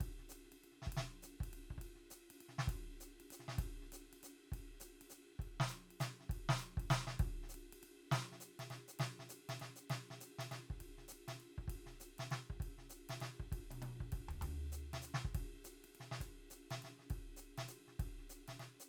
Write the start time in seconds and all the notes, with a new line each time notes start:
0.01 kick, ride
0.19 snare
0.30 hi-hat pedal, ride
0.45 snare
0.53 ride
0.64 ride
0.72 snare
0.83 snare
0.87 kick
0.93 ride
0.97 snare
1.23 hi-hat pedal, ride
1.41 kick, ride
1.54 ride
1.63 snare
1.71 kick
1.78 kick, ride
1.96 snare
2.11 hi-hat pedal, ride
2.31 hi-hat pedal, ride
2.41 ride
2.49 snare
2.59 snare
2.68 kick, ride
3.01 hi-hat pedal, ride
3.21 ride
3.31 hi-hat pedal, ride
3.40 snare
3.49 snare
3.54 snare
3.59 kick, ride
3.82 snare
3.93 hi-hat pedal, ride
4.06 snare
4.13 ride
4.24 hi-hat pedal, ride
4.46 snare
4.52 kick, ride
4.74 snare
4.81 hi-hat pedal, ride
5.02 ride
5.10 hi-hat pedal, ride
5.30 snare
5.40 kick, ride
5.61 snare
5.68 hi-hat pedal, ride
5.91 ride
6.00 snare, hi-hat pedal, ride
6.21 snare
6.30 kick, ride
6.50 snare
6.58 hi-hat pedal
6.63 ride
6.78 kick, ride
6.90 snare, hi-hat pedal
7.08 snare
7.20 kick, ride
7.44 snare
7.50 hi-hat pedal
7.55 ride
7.73 ride
7.84 ride
8.12 snare, ride
8.32 snare
8.41 hi-hat pedal, ride
8.60 snare, hi-hat pedal, ride
8.71 snare, ride
8.89 hi-hat pedal
9.00 snare, ride
9.20 snare
9.30 hi-hat pedal, ride
9.50 snare, ride
9.60 snare, ride
9.76 hi-hat pedal
9.90 snare, ride
10.11 snare
10.21 hi-hat pedal, ride
10.39 snare, ride
10.52 snare, ride
10.71 kick
10.81 kick, ride
10.98 snare
11.09 hi-hat pedal, ride
11.28 snare, ride
11.41 ride
11.58 kick
11.68 kick, ride
11.87 snare
12.01 hi-hat pedal, ride
12.19 snare, ride
12.31 snare, ride
12.50 kick
12.61 kick, ride
12.79 snare
12.90 hi-hat pedal, ride
13.10 snare, ride
13.21 snare, ride
13.40 kick
13.52 kick, ride
13.71 high tom, ride
13.82 high tom, ride
14.01 kick
14.13 kick, ride
14.29 floor tom, ride
14.42 floor tom, ride
14.73 hi-hat pedal, ride
14.94 snare, ride
15.02 hi-hat pedal, ride
15.15 snare
15.25 kick
15.35 kick, ride
15.65 hi-hat pedal, ride
15.85 ride
15.96 ride
16.01 snare
16.12 snare
16.21 kick, hi-hat pedal, ride
16.51 hi-hat pedal, ride
16.71 snare, ride
16.83 snare, ride
16.99 snare
17.11 kick, ride
17.37 hi-hat pedal, ride
17.58 snare, ride
17.69 hi-hat pedal, ride
17.88 snare
18.00 kick, ride
18.19 snare
18.30 hi-hat pedal, ride
18.48 snare, ride
18.60 snare, ride
18.80 hi-hat pedal